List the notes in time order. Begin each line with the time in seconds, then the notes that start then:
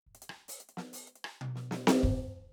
0.06 kick
0.15 closed hi-hat
0.22 closed hi-hat
0.29 cross-stick
0.48 hi-hat pedal
0.60 closed hi-hat
0.69 closed hi-hat
0.77 snare
0.93 hi-hat pedal
1.07 closed hi-hat
1.16 closed hi-hat
1.24 cross-stick
1.41 high tom
1.56 snare
1.71 snare
1.87 snare
2.03 kick